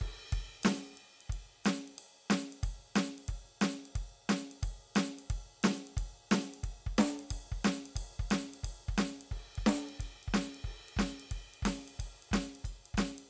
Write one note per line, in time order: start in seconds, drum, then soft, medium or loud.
0.00 kick medium
0.00 ride medium
0.32 kick medium
0.32 ride medium
0.63 snare loud
0.63 ride loud
0.97 ride medium
1.21 ride soft
1.29 kick medium
1.29 ride medium
1.64 snare loud
1.64 hi-hat pedal medium
1.64 ride medium
1.88 ride soft
1.98 ride medium
2.30 snare loud
2.30 hi-hat pedal medium
2.30 ride medium
2.52 ride medium
2.63 kick medium
2.63 ride medium
2.95 snare loud
2.95 hi-hat pedal medium
2.95 ride medium
3.18 ride soft
3.28 kick medium
3.28 ride medium
3.61 snare loud
3.61 hi-hat pedal medium
3.61 ride medium
3.85 ride soft
3.95 kick medium
3.95 ride medium
4.29 snare loud
4.29 hi-hat pedal medium
4.29 ride medium
4.51 ride medium
4.63 kick medium
4.63 ride medium
4.95 snare loud
4.95 hi-hat pedal medium
4.95 ride medium
5.18 ride medium
5.30 kick medium
5.30 ride medium
5.63 snare loud
5.63 hi-hat pedal medium
5.63 ride medium
5.87 ride medium
5.97 kick medium
5.97 ride medium
6.31 snare loud
6.31 hi-hat pedal medium
6.31 ride medium
6.54 ride medium
6.63 kick soft
6.63 hi-hat pedal soft
6.63 ride medium
6.86 kick medium
6.98 snare loud
6.98 ride medium
7.19 ride medium
7.30 kick soft
7.30 ride loud
7.52 kick soft
7.64 snare loud
7.64 ride medium
7.86 ride medium
7.95 kick soft
7.95 ride loud
8.19 kick medium
8.30 snare loud
8.30 ride loud
8.53 ride medium
8.63 kick soft
8.63 ride loud
8.88 kick medium
8.98 snare loud
8.98 ride loud
9.21 ride medium
9.31 kick soft
9.31 ride medium
9.55 kick soft
9.55 ride medium
9.66 snare loud
9.66 ride medium
9.89 ride soft
9.99 kick soft
9.99 ride medium
10.23 ride soft
10.28 kick soft
10.34 snare loud
10.34 ride medium
10.54 ride soft
10.64 kick soft
10.64 ride medium
10.88 ride soft
10.96 kick medium
10.96 snare loud
10.96 ride medium
11.20 ride medium
11.31 kick soft
11.31 ride medium
11.54 ride soft
11.62 kick soft
11.62 snare loud
11.62 ride loud
11.88 ride medium
11.99 kick soft
11.99 ride medium
12.22 ride soft
12.31 kick soft
12.31 snare loud
12.31 ride medium
12.55 ride soft
12.64 kick soft
12.64 ride bell medium
12.86 ride medium
12.94 kick soft
12.94 snare loud
12.94 ride bell medium
13.18 ride medium